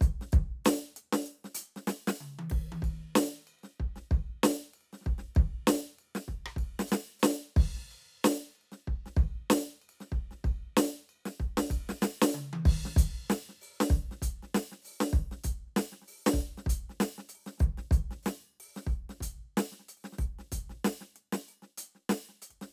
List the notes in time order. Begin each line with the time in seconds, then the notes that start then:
0.01 closed hi-hat, kick
0.21 snare
0.32 kick, closed hi-hat
0.65 open hi-hat, snare, hi-hat pedal
0.96 closed hi-hat
1.13 snare
1.21 hi-hat pedal
1.26 closed hi-hat
1.44 snare, hi-hat pedal
1.55 closed hi-hat
1.76 snare
1.87 snare, hi-hat pedal
2.08 snare
2.15 hi-hat pedal
2.21 mid tom
2.39 high tom
2.50 kick, crash
2.72 high tom
2.82 kick, ride
3.16 snare, hi-hat pedal
3.42 hi-hat pedal
3.47 ride bell
3.59 ride
3.64 snare
3.80 kick
3.96 snare
4.11 kick, ride bell
4.43 snare, hi-hat pedal
4.74 ride
4.81 ride
4.93 snare, hi-hat pedal
5.01 snare, ride
5.06 kick
5.18 snare
5.35 kick, ride
5.67 snare, hi-hat pedal
5.99 ride
6.15 snare
6.28 kick
6.46 cross-stick
6.56 kick, ride
6.79 snare
6.87 hi-hat pedal
6.92 snare
7.19 snare, hi-hat pedal
7.56 kick, crash
7.76 snare
7.81 snare
7.85 snare
7.91 ride bell
8.24 snare, hi-hat pedal
8.50 hi-hat pedal
8.55 ride bell
8.61 ride
8.72 snare
8.88 kick
9.06 snare
9.17 kick, ride bell
9.50 snare, hi-hat pedal
9.82 ride bell
9.89 ride
10.01 snare
10.12 kick
10.31 snare
10.44 kick, ride bell
10.77 snare, hi-hat pedal
11.09 ride bell
11.26 snare
11.40 kick, ride
11.57 snare
11.70 kick, ride
11.89 kick, snare
12.02 snare, hi-hat pedal
12.22 snare
12.31 hi-hat pedal, mid tom
12.53 high tom
12.65 kick, crash
12.85 snare
12.96 closed hi-hat, kick
13.30 snare, hi-hat pedal
13.49 snare
13.57 hi-hat pedal
13.61 open hi-hat
13.80 snare
13.90 kick, closed hi-hat
14.11 snare
14.22 closed hi-hat, kick
14.43 snare
14.55 snare, hi-hat pedal
14.72 snare
14.82 open hi-hat, hi-hat pedal
15.01 snare
15.13 kick, closed hi-hat
15.31 snare
15.44 closed hi-hat, kick
15.67 snare
15.76 snare, hi-hat pedal
15.92 snare
16.02 snare, hi-hat pedal
16.08 open hi-hat
16.26 snare
16.33 kick
16.41 closed hi-hat
16.58 snare
16.66 closed hi-hat, kick
16.90 snare
17.00 snare, hi-hat pedal
17.18 snare
17.29 closed hi-hat
17.35 open hi-hat
17.46 snare
17.58 kick, snare, open hi-hat
17.63 hi-hat pedal
17.78 snare
17.91 closed hi-hat, kick
18.11 snare
18.23 snare, hi-hat pedal
18.60 open hi-hat
18.76 snare
18.87 kick, hi-hat pedal
19.09 snare
19.21 closed hi-hat, kick
19.57 snare
19.72 snare
19.80 snare
19.89 closed hi-hat
19.97 open hi-hat
20.04 snare
20.13 snare
20.19 kick, open hi-hat
20.23 hi-hat pedal
20.39 snare
20.52 closed hi-hat, kick
20.70 snare
20.74 kick
20.85 snare
21.01 snare
21.16 closed hi-hat
21.33 snare
21.48 open hi-hat
21.62 snare
21.78 closed hi-hat
21.95 snare
22.09 snare
22.29 snare
22.34 snare
22.42 closed hi-hat
22.50 kick, closed hi-hat
22.61 snare